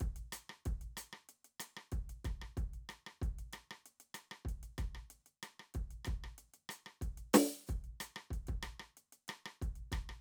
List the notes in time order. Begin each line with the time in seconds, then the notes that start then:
0.01 kick, closed hi-hat
0.17 closed hi-hat
0.33 closed hi-hat, cross-stick
0.50 cross-stick
0.66 kick, closed hi-hat
0.82 closed hi-hat
0.98 closed hi-hat, cross-stick
1.14 cross-stick
1.30 closed hi-hat
1.45 closed hi-hat
1.61 cross-stick, closed hi-hat
1.78 cross-stick
1.93 kick, closed hi-hat
2.10 closed hi-hat
2.25 kick, cross-stick, closed hi-hat
2.42 cross-stick
2.58 kick, closed hi-hat
2.74 closed hi-hat
2.90 cross-stick, closed hi-hat
3.07 cross-stick
3.22 kick, closed hi-hat
3.39 closed hi-hat
3.54 cross-stick, closed hi-hat
3.72 cross-stick
3.87 closed hi-hat
4.01 closed hi-hat
4.15 cross-stick, closed hi-hat
4.32 cross-stick
4.46 kick, closed hi-hat
4.64 closed hi-hat
4.79 kick, cross-stick, closed hi-hat
4.96 cross-stick
5.11 closed hi-hat
5.27 closed hi-hat
5.44 cross-stick, closed hi-hat
5.60 cross-stick
5.75 kick, closed hi-hat
5.91 closed hi-hat
6.06 kick, cross-stick, closed hi-hat
6.25 cross-stick
6.39 closed hi-hat
6.55 closed hi-hat
6.70 closed hi-hat, cross-stick
6.87 cross-stick
7.02 kick, closed hi-hat
7.18 closed hi-hat
7.34 open hi-hat, snare
7.68 kick, closed hi-hat, hi-hat pedal
7.85 closed hi-hat
8.01 closed hi-hat, cross-stick
8.17 cross-stick
8.31 kick, closed hi-hat
8.48 kick, closed hi-hat
8.64 cross-stick, closed hi-hat
8.80 cross-stick
8.98 closed hi-hat
9.13 closed hi-hat
9.29 cross-stick, closed hi-hat
9.47 cross-stick
9.63 kick, closed hi-hat
9.76 closed hi-hat
9.93 kick, cross-stick, closed hi-hat
10.10 cross-stick